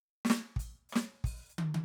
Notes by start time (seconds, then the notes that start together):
0.25 snare
0.30 snare
0.56 open hi-hat, kick
0.89 cross-stick, hi-hat pedal
0.95 snare
1.24 open hi-hat, kick
1.49 hi-hat pedal
1.58 high tom
1.74 high tom